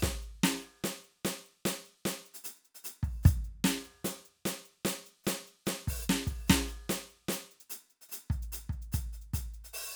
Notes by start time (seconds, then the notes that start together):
0.01 closed hi-hat, kick, snare, hi-hat pedal
0.23 closed hi-hat
0.44 closed hi-hat, snare
0.63 closed hi-hat
0.85 closed hi-hat, snare
1.05 closed hi-hat
1.25 closed hi-hat, snare, hi-hat pedal
1.46 closed hi-hat
1.66 closed hi-hat, snare
1.86 closed hi-hat
2.06 closed hi-hat, snare
2.26 closed hi-hat
2.34 closed hi-hat
2.45 closed hi-hat
2.57 closed hi-hat
2.65 closed hi-hat
2.75 closed hi-hat
2.83 closed hi-hat, hi-hat pedal
3.04 kick, open hi-hat
3.24 closed hi-hat, kick, hi-hat pedal
3.45 closed hi-hat
3.65 closed hi-hat, snare
3.85 closed hi-hat
4.05 closed hi-hat, snare
4.26 closed hi-hat
4.46 closed hi-hat, snare
4.66 closed hi-hat
4.86 closed hi-hat, snare
5.07 closed hi-hat
5.25 closed hi-hat, snare, hi-hat pedal
5.48 closed hi-hat
5.67 closed hi-hat, snare
5.88 open hi-hat, kick
6.04 hi-hat pedal
6.10 snare
6.28 kick, open hi-hat
6.48 closed hi-hat, kick, snare, hi-hat pedal
6.69 closed hi-hat
6.90 closed hi-hat, snare
7.11 closed hi-hat
7.29 closed hi-hat, snare
7.52 closed hi-hat
7.61 closed hi-hat
7.70 closed hi-hat
7.91 closed hi-hat
8.02 closed hi-hat
8.10 closed hi-hat, hi-hat pedal
8.31 closed hi-hat, kick
8.43 closed hi-hat
8.53 closed hi-hat
8.70 kick, closed hi-hat
8.83 closed hi-hat
8.93 closed hi-hat, kick, hi-hat pedal
9.13 closed hi-hat
9.22 closed hi-hat
9.34 open hi-hat, kick
9.54 closed hi-hat
9.65 closed hi-hat
9.74 open hi-hat